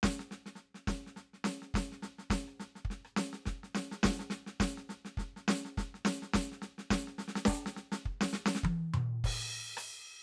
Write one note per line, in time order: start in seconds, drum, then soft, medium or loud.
0.03 kick soft
0.03 snare loud
0.19 snare soft
0.31 snare soft
0.46 snare soft
0.55 snare soft
0.74 snare soft
0.87 kick medium
0.87 snare medium
1.06 snare soft
1.16 snare soft
1.33 snare soft
1.44 snare medium
1.62 snare soft
1.74 kick medium
1.74 snare medium
1.92 snare soft
2.02 snare medium
2.18 snare soft
2.30 kick medium
2.30 snare loud
2.48 cross-stick soft
2.60 snare soft
2.75 snare soft
2.85 kick medium
2.90 snare soft
3.05 cross-stick soft
3.16 snare loud
3.33 snare soft
3.45 kick medium
3.45 snare medium
3.63 snare soft
3.75 snare medium
3.91 snare soft
4.03 kick medium
4.03 snare loud
4.19 snare soft
4.30 snare medium
4.46 snare soft
4.60 kick medium
4.60 snare loud
4.77 snare soft
4.89 snare soft
5.05 snare soft
5.17 kick medium
5.17 snare soft
5.36 snare soft
5.48 snare loud
5.65 snare soft
5.77 kick medium
5.77 snare medium
5.94 snare soft
6.05 snare loud
6.22 snare soft
6.33 kick soft
6.33 snare loud
6.52 snare soft
6.78 snare soft
6.90 kick soft
6.90 snare loud
7.07 snare soft
7.18 snare medium
7.28 snare medium
7.35 snare medium
7.45 kick medium
7.45 snare loud
7.66 snare medium
7.76 snare soft
7.92 snare medium
8.05 kick medium
8.05 cross-stick soft
8.21 snare loud
8.33 snare medium
8.46 snare loud
8.55 snare medium
8.63 kick medium
8.63 high tom loud
8.94 mid tom loud
9.24 kick medium
9.24 crash loud
9.54 open hi-hat soft
9.77 open hi-hat medium
9.77 cross-stick medium
10.05 open hi-hat soft